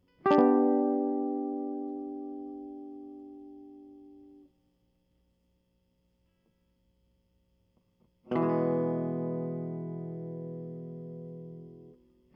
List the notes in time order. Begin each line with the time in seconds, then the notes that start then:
0.26 G4
0.31 D4
0.39 B3
8.33 B2 E3
8.43 G#3